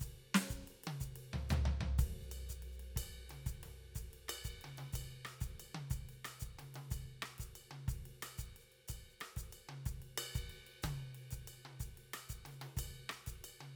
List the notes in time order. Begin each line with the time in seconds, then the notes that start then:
0.01 kick, hi-hat pedal, ride
0.35 snare, ride
0.50 kick, hi-hat pedal
0.68 ride
0.84 high tom, ride
1.01 kick, hi-hat pedal
1.16 ride
1.23 hi-hat pedal
1.34 floor tom
1.50 floor tom, hi-hat pedal
1.66 floor tom
1.81 floor tom
1.99 kick, hi-hat pedal, ride
2.21 hi-hat pedal
2.32 ride bell
2.50 kick, hi-hat pedal
2.63 ride
2.73 hi-hat pedal
2.80 ride
2.97 kick, hi-hat pedal, ride bell
3.30 high tom, ride
3.47 kick, hi-hat pedal, ride
3.64 snare, ride, floor tom
3.96 kick, hi-hat pedal, ride
4.14 ride
4.29 cross-stick, ride bell
4.45 kick, hi-hat pedal
4.62 high tom, ride
4.66 hi-hat pedal
4.78 high tom, ride
4.93 kick, hi-hat pedal, ride bell
5.26 cross-stick, ride
5.41 kick, hi-hat pedal, ride
5.60 ride bell
5.75 high tom
5.91 kick, hi-hat pedal, ride bell
6.10 hi-hat pedal, ride
6.25 cross-stick, ride bell
6.40 kick, hi-hat pedal
6.59 high tom, ride
6.75 high tom, ride
6.91 kick, hi-hat pedal, ride bell
7.23 cross-stick, ride
7.39 kick, hi-hat pedal, ride
7.56 ride bell
7.72 high tom
7.89 kick, hi-hat pedal, ride
8.06 ride
8.23 cross-stick, ride bell
8.39 kick, hi-hat pedal
8.57 ride
8.61 hi-hat pedal
8.73 ride
8.89 kick, hi-hat pedal, ride bell
9.10 hi-hat pedal
9.21 cross-stick, ride
9.37 kick, hi-hat pedal, ride
9.53 ride bell
9.69 high tom
9.86 kick, hi-hat pedal, ride
10.03 ride
10.18 cross-stick, ride bell
10.35 kick, hi-hat pedal
10.50 ride
10.67 ride
10.83 kick, hi-hat pedal, high tom, ride bell
11.15 ride
11.31 kick, hi-hat pedal, ride
11.48 ride bell
11.54 hi-hat pedal
11.66 high tom
11.80 kick, hi-hat pedal, ride
11.98 ride
12.14 cross-stick, ride bell
12.30 kick, hi-hat pedal
12.46 high tom, ride
12.52 hi-hat pedal
12.62 high tom, ride
12.77 kick, hi-hat pedal, ride bell
13.10 cross-stick, ride
13.27 kick, hi-hat pedal, ride
13.45 ride bell
13.49 hi-hat pedal
13.61 high tom